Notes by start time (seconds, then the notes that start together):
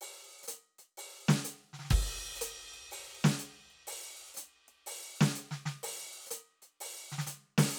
0.01 open hi-hat
0.43 hi-hat pedal
0.48 closed hi-hat
0.79 closed hi-hat
0.97 open hi-hat
1.29 snare, hi-hat pedal
1.45 closed hi-hat
1.73 snare
1.79 snare
1.85 snare
1.91 kick, snare, crash
2.36 hi-hat pedal
2.41 closed hi-hat
2.74 closed hi-hat
2.91 open hi-hat
3.24 snare
3.29 hi-hat pedal
3.39 closed hi-hat
3.70 closed hi-hat
3.87 open hi-hat
4.34 closed hi-hat, hi-hat pedal
4.68 closed hi-hat
4.86 open hi-hat
5.21 snare
5.28 hi-hat pedal
5.35 closed hi-hat
5.51 snare
5.66 snare
5.83 open hi-hat
6.26 hi-hat pedal
6.31 closed hi-hat
6.62 closed hi-hat
6.81 open hi-hat
7.12 snare
7.18 snare, hi-hat pedal
7.26 closed hi-hat, snare
7.58 open hi-hat, snare